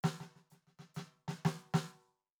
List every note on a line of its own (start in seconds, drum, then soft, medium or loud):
0.04 snare medium
0.04 hi-hat pedal soft
0.21 snare soft
0.36 snare soft
0.51 snare soft
0.51 hi-hat pedal soft
0.68 snare soft
0.80 snare soft
0.95 snare soft
0.95 hi-hat pedal soft
1.29 snare medium
1.46 snare medium
1.75 snare medium